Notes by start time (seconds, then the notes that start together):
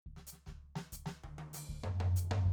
0.06 kick
0.16 snare
0.27 hi-hat pedal
0.32 snare
0.46 kick, snare
0.75 snare
0.92 kick, hi-hat pedal
1.06 snare
1.24 kick, high tom
1.38 high tom
1.53 hi-hat pedal, high tom
1.69 kick
1.83 floor tom
2.00 floor tom
2.14 kick, hi-hat pedal
2.31 floor tom
2.46 kick